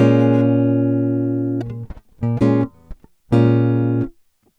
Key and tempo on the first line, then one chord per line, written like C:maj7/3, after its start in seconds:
A# minor, 110 BPM
0.23 A#:min7